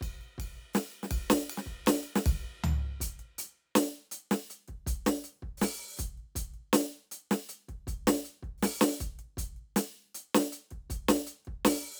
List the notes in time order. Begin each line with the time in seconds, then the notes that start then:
0.01 kick, ride bell
0.21 ride
0.38 kick, ride
0.59 ride
0.73 snare, hi-hat pedal, ride
0.92 ride
1.03 snare
1.11 kick, ride
1.30 snare
1.50 ride
1.58 snare
1.66 kick, ride
1.86 snare, ride
2.03 ride
2.16 snare
2.26 kick, ride
2.64 floor tom
3.00 closed hi-hat, kick
3.19 closed hi-hat
3.38 closed hi-hat
3.75 closed hi-hat, snare
3.93 closed hi-hat
4.11 closed hi-hat
4.31 snare, closed hi-hat
4.50 closed hi-hat
4.68 kick, closed hi-hat
4.87 closed hi-hat, kick
5.05 snare, closed hi-hat
5.24 closed hi-hat
5.42 kick
5.57 hi-hat pedal
5.62 open hi-hat, snare
5.97 closed hi-hat, kick, hi-hat pedal
6.18 closed hi-hat
6.35 closed hi-hat, kick
6.54 closed hi-hat
6.73 closed hi-hat, snare
6.92 closed hi-hat
7.11 closed hi-hat
7.31 snare, closed hi-hat
7.49 closed hi-hat
7.69 kick, closed hi-hat
7.87 closed hi-hat, kick
8.07 snare
8.25 closed hi-hat
8.43 kick, closed hi-hat
8.58 hi-hat pedal
8.63 open hi-hat, snare
8.81 snare
8.98 closed hi-hat, kick, hi-hat pedal
9.19 closed hi-hat
9.37 closed hi-hat, kick
9.56 closed hi-hat
9.76 closed hi-hat, snare
10.15 closed hi-hat
10.35 snare, closed hi-hat
10.39 snare
10.52 closed hi-hat
10.71 kick, closed hi-hat
10.90 closed hi-hat, kick
11.09 snare
11.27 closed hi-hat
11.45 kick, closed hi-hat
11.65 open hi-hat, snare